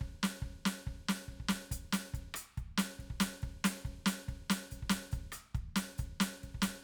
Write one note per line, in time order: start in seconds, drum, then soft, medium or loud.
0.01 kick soft
0.23 snare loud
0.42 kick soft
0.66 snare loud
0.87 kick soft
1.09 snare medium
1.28 kick soft
1.40 kick soft
1.49 snare loud
1.71 closed hi-hat medium
1.71 kick soft
1.93 closed hi-hat medium
1.93 snare medium
2.14 kick soft
2.14 closed hi-hat medium
2.34 closed hi-hat medium
2.34 cross-stick medium
2.58 kick soft
2.58 closed hi-hat soft
2.78 closed hi-hat medium
2.78 snare loud
2.99 kick soft
2.99 closed hi-hat soft
3.10 kick soft
3.20 closed hi-hat medium
3.20 snare loud
3.42 kick soft
3.42 closed hi-hat soft
3.64 closed hi-hat medium
3.64 snare loud
3.85 kick soft
3.85 closed hi-hat soft
4.06 closed hi-hat medium
4.06 snare loud
4.27 kick soft
4.27 snare soft
4.27 closed hi-hat soft
4.50 closed hi-hat medium
4.50 snare loud
4.71 closed hi-hat soft
4.71 kick soft
4.83 kick soft
4.90 closed hi-hat medium
4.90 snare loud
5.12 closed hi-hat soft
5.12 kick medium
5.32 closed hi-hat medium
5.32 cross-stick medium
5.55 kick medium
5.55 closed hi-hat soft
5.76 closed hi-hat medium
5.76 snare medium
5.88 snare soft
5.98 closed hi-hat soft
5.98 kick medium
6.20 closed hi-hat medium
6.20 snare loud
6.44 kick soft
6.44 closed hi-hat soft
6.55 kick soft
6.62 closed hi-hat medium
6.62 snare loud